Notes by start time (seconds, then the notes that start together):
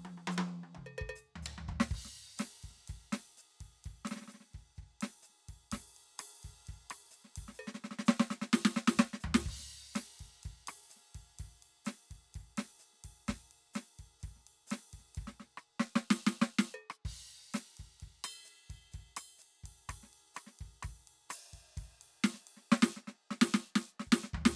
0.01 hi-hat pedal
0.05 high tom
0.18 high tom
0.27 hi-hat pedal, high tom
0.38 high tom
0.64 high tom
0.75 kick, mid tom
0.86 percussion
0.98 kick, percussion
1.07 kick, percussion
1.16 hi-hat pedal
1.36 floor tom
1.41 kick, hi-hat pedal
1.46 floor tom
1.58 floor tom
1.68 kick, floor tom
1.74 kick
1.80 snare
1.89 kick, hi-hat pedal
1.94 crash
1.98 kick
2.05 snare
2.38 snare, hi-hat pedal, ride
2.63 kick, ride
2.70 snare
2.76 snare
2.87 kick, hi-hat pedal, ride
2.95 kick
3.13 snare, ride
3.38 hi-hat pedal, ride
3.61 kick, ride
3.66 kick
3.84 kick, hi-hat pedal, ride
3.91 kick
4.05 snare, ride
4.11 snare
4.16 snare
4.22 snare
4.28 snare, hi-hat pedal
4.34 snare
4.40 snare
4.46 snare
4.51 kick, snare, ride
4.55 snare
4.60 snare
4.76 kick, hi-hat pedal, ride
4.83 kick
5.01 snare, ride
5.23 hi-hat pedal
5.29 snare
5.49 kick, ride
5.71 kick, snare, hi-hat pedal, ride
5.77 kick
5.97 ride
6.18 cross-stick, hi-hat pedal, ride
6.43 kick, ride
6.50 kick
6.66 kick, hi-hat pedal, ride
6.74 kick
6.90 cross-stick, ride
7.11 hi-hat pedal
7.24 snare
7.36 kick, ride
7.43 kick
7.48 snare
7.54 hi-hat pedal
7.59 percussion
7.67 snare
7.74 snare, hi-hat pedal
7.84 snare
7.91 snare
7.99 snare
8.06 snare, hi-hat pedal
8.20 snare
8.30 snare, hi-hat pedal
8.42 snare
8.53 snare, hi-hat pedal
8.65 snare
8.74 snare, hi-hat pedal
8.88 snare
8.97 kick, snare, hi-hat pedal
9.13 snare
9.20 kick, floor tom, hi-hat pedal
9.30 kick
9.34 snare
9.45 kick, hi-hat pedal, crash
9.52 kick
9.59 snare
9.94 snare, hi-hat pedal, ride
10.19 kick, ride
10.26 snare
10.29 snare
10.42 kick, hi-hat pedal, ride
10.68 cross-stick, ride
10.90 hi-hat pedal, ride
10.96 snare
11.15 kick, ride
11.38 kick, hi-hat pedal, ride
11.45 kick
11.63 ride
11.85 snare, hi-hat pedal, ride
12.11 kick, ride
12.15 snare
12.33 kick, hi-hat pedal, ride
12.41 kick
12.58 snare, ride
12.79 hi-hat pedal
12.93 snare
13.04 kick, ride
13.27 kick, snare, hi-hat pedal, ride
13.51 ride
13.74 snare, hi-hat pedal, ride
13.99 kick, ride
14.20 kick, hi-hat pedal, ride
14.29 kick
14.36 snare
14.40 snare
14.47 ride
14.67 hi-hat pedal, ride
14.72 snare
14.93 kick, ride
14.99 snare
15.14 kick, hi-hat pedal, ride
15.23 kick
15.27 snare
15.40 snare
15.58 cross-stick
15.80 snare
15.96 snare
16.11 snare
16.27 snare
16.42 snare
16.59 snare
16.74 percussion
16.90 cross-stick
17.05 kick, crash
17.54 snare, hi-hat pedal, ride
17.77 kick, snare, ride
18.00 kick, hi-hat pedal, ride
18.07 kick
18.24 cross-stick, ride bell
18.45 hi-hat pedal, ride
18.70 kick, ride
18.75 kick
18.92 kick, hi-hat pedal, ride
18.99 kick
19.17 cross-stick, ride bell
19.39 hi-hat pedal, ride
19.64 kick, ride
19.88 kick, cross-stick, hi-hat pedal, ride
19.94 kick
20.03 snare
20.13 ride
20.35 cross-stick, hi-hat pedal, ride
20.47 snare
20.59 kick, ride
20.66 kick
20.81 kick, cross-stick, hi-hat pedal, ride
20.90 kick
21.07 ride
21.30 cross-stick, hi-hat pedal, ride
21.53 kick, ride
21.77 kick, ride
21.83 kick
22.01 ride
22.24 snare, ride
22.34 snare
22.47 ride
22.57 snare
22.72 snare
22.82 snare
22.97 snare
23.07 snare
23.31 snare
23.41 snare
23.54 snare
23.76 snare
24.00 snare
24.07 kick
24.12 snare
24.24 snare
24.34 kick, floor tom
24.40 kick
24.45 snare